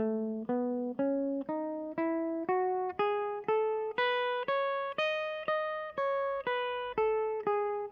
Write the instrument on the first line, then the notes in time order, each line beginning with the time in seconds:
electric guitar
0.00 A3
0.50 B3
1.00 C#4
1.50 D#4
1.99 E4
2.50 F#4
3.00 G#4
3.49 A4
3.99 B4
4.49 C#5
4.99 D#5
5.49 D#5
5.99 C#5
6.47 B4
6.98 A4
7.48 G#4